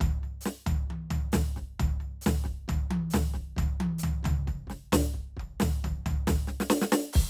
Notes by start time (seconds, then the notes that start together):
0.01 kick, floor tom
0.24 floor tom
0.41 hi-hat pedal
0.46 snare
0.67 kick, floor tom
0.91 high tom
1.11 floor tom
1.33 snare, floor tom, hi-hat pedal
1.57 kick, snare
1.80 kick, floor tom
2.01 floor tom
2.22 hi-hat pedal
2.27 snare, floor tom
2.45 kick, snare
2.69 kick, floor tom
2.91 high tom
3.11 snare, floor tom, hi-hat pedal
3.34 kick, snare
3.57 kick, floor tom
3.70 kick
3.81 high tom
3.99 hi-hat pedal
4.04 floor tom
4.24 kick, floor tom, mid tom
4.48 kick, floor tom
4.68 kick, snare
4.93 snare, floor tom, hi-hat pedal
5.15 kick
5.37 kick, floor tom
5.61 snare, floor tom
5.85 kick, floor tom
6.07 kick, floor tom
6.28 kick, snare, floor tom, hi-hat pedal
6.48 snare
6.61 snare
6.71 snare
6.82 snare
6.93 snare
7.14 kick, crash